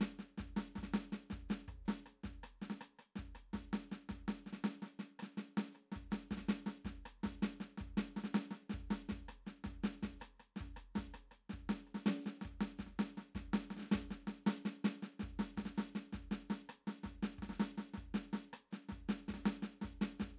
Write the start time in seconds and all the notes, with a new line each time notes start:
0.01 snare, hi-hat pedal
0.19 snare
0.38 kick, snare, hi-hat pedal
0.57 snare
0.76 kick, snare, hi-hat pedal
0.83 snare
0.94 snare
1.12 snare, hi-hat pedal
1.30 kick, snare
1.49 snare, hi-hat pedal
1.68 kick, cross-stick
1.85 snare, hi-hat pedal
2.06 cross-stick
2.24 kick, snare, hi-hat pedal
2.44 cross-stick
2.62 snare, hi-hat pedal
2.70 snare
2.81 cross-stick
2.99 cross-stick, hi-hat pedal
3.16 kick, snare
3.35 cross-stick, hi-hat pedal
3.53 kick, snare
3.73 snare, hi-hat pedal
3.92 snare
4.09 kick, snare, hi-hat pedal
4.28 snare
4.46 snare, hi-hat pedal
4.53 snare
4.64 snare
4.82 snare, hi-hat pedal
4.99 snare
5.19 cross-stick, snare
5.31 hi-hat pedal
5.37 snare
5.57 snare
5.72 cross-stick, hi-hat pedal
5.92 snare
5.96 kick
6.11 snare, hi-hat pedal
6.31 kick, snare
6.37 snare
6.48 snare, hi-hat pedal
6.66 snare
6.85 kick, snare, hi-hat pedal
7.06 cross-stick
7.23 kick, snare, hi-hat pedal
7.43 snare
7.60 snare, hi-hat pedal
7.78 kick, snare
7.97 snare, hi-hat pedal
8.17 snare
8.24 snare
8.35 snare, hi-hat pedal
8.51 snare
8.70 snare, hi-hat pedal
8.74 kick
8.91 snare
9.09 kick, snare, hi-hat pedal
9.29 cross-stick
9.46 snare, hi-hat pedal
9.64 kick, snare
9.83 snare, hi-hat pedal
10.03 kick, snare
10.20 cross-stick, hi-hat pedal
10.40 cross-stick
10.56 snare, hi-hat pedal
10.59 kick, snare
10.77 cross-stick
10.95 kick, snare, hi-hat pedal
11.14 cross-stick
11.31 cross-stick, hi-hat pedal
11.50 kick, snare
11.69 snare, hi-hat pedal
11.87 cross-stick
11.95 snare
12.06 snare, hi-hat pedal
12.26 snare
12.41 kick, snare, hi-hat pedal
12.61 snare
12.78 kick, snare, hi-hat pedal
12.87 snare
12.99 snare
13.17 snare, hi-hat pedal
13.35 kick, snare
13.53 snare, hi-hat pedal
13.71 snare
13.77 snare
13.79 snare
13.82 snare
13.92 kick, snare, hi-hat pedal
14.11 snare
14.27 snare, hi-hat pedal
14.47 snare
14.65 snare, hi-hat pedal
14.85 snare
15.03 snare, hi-hat pedal
15.20 kick, snare
15.39 snare, hi-hat pedal
15.57 kick, snare
15.65 snare
15.76 snare, hi-hat pedal
15.95 snare
16.13 kick, snare, hi-hat pedal
16.31 snare
16.49 snare, hi-hat pedal
16.69 cross-stick
16.87 snare, hi-hat pedal
17.04 kick, snare
17.23 snare, hi-hat pedal
17.39 kick, snare
17.49 snare
17.52 snare
17.60 snare, hi-hat pedal
17.78 snare
17.94 kick, snare, hi-hat pedal
18.14 snare
18.33 snare, hi-hat pedal
18.53 cross-stick
18.71 snare, hi-hat pedal
18.89 kick, snare
19.08 snare, hi-hat pedal
19.28 kick, snare
19.34 snare
19.46 snare, hi-hat pedal
19.63 snare
19.82 kick, snare, hi-hat pedal
20.01 snare
20.19 kick, snare, hi-hat pedal